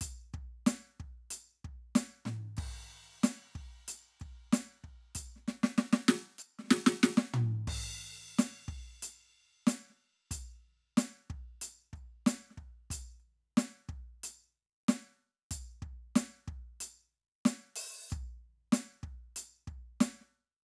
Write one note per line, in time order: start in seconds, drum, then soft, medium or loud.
0.01 kick medium
0.01 percussion loud
0.33 kick medium
0.33 percussion soft
0.66 snare loud
0.66 percussion loud
1.00 kick soft
1.31 percussion loud
1.64 kick soft
1.95 snare loud
1.95 percussion loud
2.25 snare medium
2.25 floor tom medium
2.57 kick medium
2.57 crash medium
3.23 snare loud
3.23 percussion loud
3.55 kick soft
3.88 percussion loud
4.20 kick soft
4.20 percussion soft
4.53 snare loud
4.53 percussion loud
4.84 kick soft
5.15 kick soft
5.15 percussion loud
5.36 snare soft
5.48 snare medium
5.63 snare loud
5.78 snare loud
5.93 snare loud
6.08 snare loud
6.38 percussion loud
6.59 snare soft
6.64 snare soft
6.67 snare soft
6.71 snare loud
6.86 snare loud
7.03 snare loud
7.03 percussion medium
7.17 snare loud
7.34 floor tom loud
7.67 kick medium
7.67 crash loud
8.39 snare loud
8.39 percussion loud
8.68 kick medium
8.68 percussion soft
9.02 percussion loud
9.30 percussion soft
9.67 snare loud
9.67 percussion loud
9.90 snare soft
10.31 kick medium
10.31 percussion loud
10.97 snare loud
10.97 percussion loud
11.30 kick medium
11.61 percussion loud
11.93 kick soft
11.93 percussion soft
12.26 snare loud
12.26 percussion loud
12.50 snare soft
12.57 kick soft
12.57 percussion soft
12.90 kick medium
12.90 percussion loud
13.20 percussion soft
13.57 snare loud
13.57 percussion loud
13.89 kick medium
13.89 percussion soft
14.23 percussion loud
14.88 snare loud
14.88 percussion loud
15.51 kick medium
15.51 percussion loud
15.82 kick soft
15.82 percussion soft
16.16 snare loud
16.16 percussion loud
16.46 kick medium
16.46 percussion soft
16.80 percussion loud
17.14 percussion soft
17.45 snare loud
17.45 percussion loud
17.76 percussion loud
18.10 percussion medium
18.12 kick medium
18.12 percussion soft
18.72 snare loud
18.72 percussion loud
19.03 kick soft
19.36 percussion loud
19.67 kick soft
19.67 percussion soft
20.01 snare loud
20.01 percussion loud
20.21 snare soft